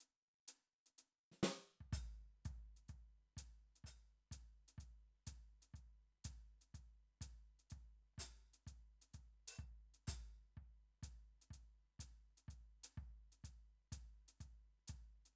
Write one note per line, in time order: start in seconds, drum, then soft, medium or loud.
0.01 closed hi-hat soft
0.48 closed hi-hat medium
0.87 closed hi-hat soft
0.99 closed hi-hat soft
1.32 snare soft
1.44 snare medium
1.81 kick soft
1.93 closed hi-hat medium
1.93 kick soft
2.46 kick soft
2.46 closed hi-hat soft
2.77 closed hi-hat soft
2.89 kick soft
2.89 closed hi-hat soft
3.38 kick soft
3.38 closed hi-hat medium
3.76 closed hi-hat soft
3.85 closed hi-hat medium
3.85 kick soft
4.32 kick soft
4.32 closed hi-hat medium
4.69 closed hi-hat soft
4.79 kick soft
4.79 closed hi-hat soft
5.27 kick soft
5.27 closed hi-hat medium
5.63 closed hi-hat soft
5.75 kick soft
5.75 closed hi-hat soft
6.25 kick soft
6.25 closed hi-hat medium
6.62 closed hi-hat soft
6.75 kick soft
6.75 closed hi-hat soft
7.22 kick soft
7.22 closed hi-hat medium
7.60 closed hi-hat soft
7.71 kick soft
7.71 closed hi-hat soft
8.19 closed hi-hat medium
8.19 kick soft
8.54 closed hi-hat soft
8.67 kick soft
8.67 closed hi-hat soft
9.02 closed hi-hat soft
9.14 kick soft
9.14 closed hi-hat soft
9.48 open hi-hat medium
9.55 hi-hat pedal soft
9.59 kick soft
9.95 closed hi-hat soft
10.08 open hi-hat medium
10.08 kick soft
10.58 kick soft
11.03 kick soft
11.03 closed hi-hat medium
11.42 closed hi-hat soft
11.51 kick soft
11.51 closed hi-hat soft
12.00 kick soft
12.00 closed hi-hat medium
12.38 closed hi-hat soft
12.49 kick soft
12.49 closed hi-hat soft
12.84 open hi-hat medium
12.98 kick soft
13.33 closed hi-hat soft
13.45 kick soft
13.45 closed hi-hat medium
13.93 kick soft
13.93 closed hi-hat medium
14.29 closed hi-hat soft
14.41 kick soft
14.41 closed hi-hat soft
14.88 kick soft
14.88 closed hi-hat medium
15.26 closed hi-hat soft